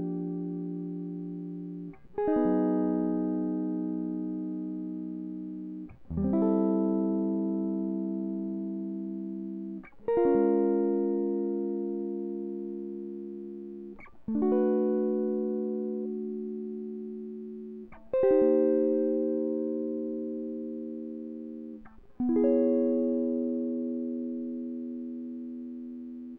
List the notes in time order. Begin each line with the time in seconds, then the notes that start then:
2.18 G#4
2.28 D#4
2.37 B3
6.18 G3
6.25 C4
6.34 E4
6.42 A4
10.08 A#4
10.18 F4
10.26 C#4
14.29 A3
14.36 D4
14.42 F#4
14.52 B4
18.14 C5
18.24 G4
18.31 D#4
18.38 A#3
19.49 A#3
22.21 B3
22.29 E4
22.36 G#4
22.44 C#5